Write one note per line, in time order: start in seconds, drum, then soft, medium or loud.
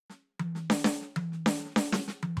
0.10 snare soft
0.39 high tom loud
0.55 snare soft
0.70 snare loud
0.84 snare loud
1.01 snare soft
1.16 high tom loud
1.32 snare soft
1.46 snare loud
1.58 snare soft
1.65 snare soft
1.70 snare soft
1.76 snare loud
1.92 snare loud
2.08 snare medium
2.23 high tom loud
2.37 mid tom loud